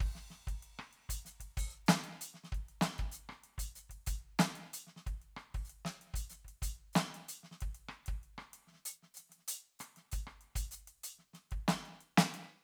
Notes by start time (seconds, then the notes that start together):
0.01 kick, crash
0.16 snare
0.31 snare
0.48 kick, closed hi-hat
0.63 closed hi-hat
0.80 cross-stick
0.93 closed hi-hat
1.10 closed hi-hat, kick
1.26 snare, hi-hat pedal
1.41 kick, closed hi-hat
1.58 open hi-hat, kick
1.87 snare, hi-hat pedal
1.96 snare
2.04 closed hi-hat
2.22 closed hi-hat
2.35 snare
2.44 snare
2.53 kick, closed hi-hat
2.69 closed hi-hat
2.82 snare
2.99 kick, open hi-hat
3.12 closed hi-hat, hi-hat pedal
3.30 cross-stick
3.33 cross-stick
3.44 closed hi-hat
3.59 open hi-hat, kick
3.76 snare, hi-hat pedal
3.90 kick, closed hi-hat
4.07 open hi-hat, kick
4.39 snare, hi-hat pedal
4.56 closed hi-hat
4.74 closed hi-hat
4.87 snare
4.97 snare
5.07 kick, closed hi-hat
5.22 closed hi-hat
5.37 cross-stick
5.55 kick, open hi-hat
5.66 hi-hat pedal
5.70 closed hi-hat
5.86 snare
6.02 closed hi-hat
6.14 open hi-hat, kick
6.30 snare, hi-hat pedal
6.45 kick, closed hi-hat
6.63 open hi-hat, kick
6.94 snare, hi-hat pedal
7.15 closed hi-hat
7.29 closed hi-hat
7.44 snare
7.52 snare
7.61 kick, closed hi-hat
7.75 closed hi-hat
7.89 cross-stick
8.07 kick, closed hi-hat
8.24 closed hi-hat
8.39 cross-stick
8.42 cross-stick
8.54 closed hi-hat
8.68 snare
8.72 snare
8.74 snare
8.86 open hi-hat
9.03 snare
9.15 closed hi-hat, hi-hat pedal
9.19 snare
9.30 snare, closed hi-hat
9.36 snare
9.38 snare
9.49 open hi-hat
9.80 cross-stick, closed hi-hat, hi-hat pedal
9.97 snare, closed hi-hat
10.12 closed hi-hat, kick
10.27 cross-stick
10.42 closed hi-hat
10.56 closed hi-hat, kick
10.72 hi-hat pedal
10.88 closed hi-hat
11.04 closed hi-hat
11.19 snare
11.34 snare, closed hi-hat
11.52 kick, closed hi-hat
11.69 snare
11.86 closed hi-hat
12.01 closed hi-hat
12.18 snare
12.35 closed hi-hat